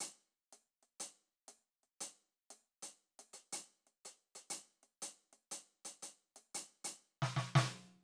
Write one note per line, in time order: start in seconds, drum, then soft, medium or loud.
0.01 closed hi-hat loud
0.53 closed hi-hat medium
0.83 open hi-hat soft
1.01 closed hi-hat loud
1.49 closed hi-hat medium
1.84 open hi-hat soft
2.01 closed hi-hat loud
2.51 closed hi-hat medium
2.83 closed hi-hat medium
3.20 closed hi-hat medium
3.34 closed hi-hat medium
3.53 closed hi-hat loud
3.87 closed hi-hat soft
4.06 closed hi-hat medium
4.36 closed hi-hat medium
4.51 closed hi-hat loud
4.84 closed hi-hat soft
5.03 closed hi-hat loud
5.33 closed hi-hat soft
5.52 closed hi-hat loud
5.86 closed hi-hat medium
6.03 closed hi-hat medium
6.37 closed hi-hat medium
6.55 closed hi-hat loud
6.85 closed hi-hat loud
7.23 snare medium
7.37 snare medium
7.56 snare loud